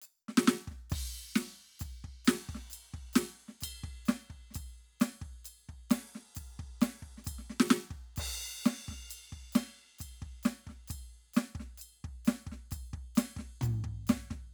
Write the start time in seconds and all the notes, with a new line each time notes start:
0.04 percussion
0.28 snare
0.37 snare
0.47 snare
0.67 kick, snare
0.90 kick, percussion, crash
1.35 snare, ride bell, percussion
1.79 kick, ride bell, percussion
2.04 kick
2.25 snare, crash, ride bell, percussion
2.49 kick
2.55 snare
2.70 ride bell, percussion
2.94 kick
3.13 snare, ride bell, percussion
3.48 snare
3.61 kick, ride bell, percussion
3.83 kick
4.05 snare, ride bell, percussion
4.30 kick
4.51 snare, percussion
4.55 kick, ride bell
5.00 snare, ride bell, percussion
5.21 kick
5.45 ride bell, percussion
5.69 kick
5.90 snare, ride, percussion
6.15 snare
6.35 kick, ride, percussion
6.59 kick
6.81 snare, ride, percussion
7.02 kick
7.17 snare
7.24 kick, ride bell, percussion
7.38 snare
7.50 snare
7.60 snare
7.68 snare, percussion
7.90 kick
8.16 kick, crash, percussion
8.64 snare, ride, percussion
8.88 kick, snare
9.10 ride bell, percussion
9.32 kick
9.52 snare, ride bell, percussion
9.98 kick, snare, ride bell, percussion
10.22 kick
10.43 snare, ride bell, percussion
10.67 kick, snare
10.87 kick, ride bell, percussion
11.34 snare, ride bell, percussion
11.55 kick
11.60 snare
11.78 ride bell, percussion
12.04 kick
12.25 snare, ride bell, percussion
12.46 kick
12.52 snare
12.71 kick, ride bell, percussion
12.93 kick
13.15 snare, ride bell, percussion
13.36 kick, snare
13.61 kick, floor tom, percussion
13.84 kick
14.07 kick, snare, ride bell, percussion
14.30 kick, snare